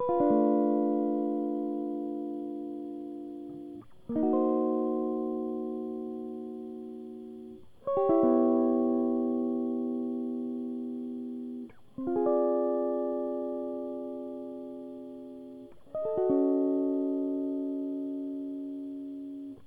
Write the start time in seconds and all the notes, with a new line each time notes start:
0.00 B4
0.09 F4
0.21 D4
0.34 A3
4.09 A#3
4.15 D#4
4.24 F#4
4.33 C5
7.87 C#5
7.98 G4
8.13 E4
8.24 B3
12.05 C4 F4
12.16 G#4
12.26 D5
15.95 D#5
16.06 A4
16.17 F#4
16.30 C#4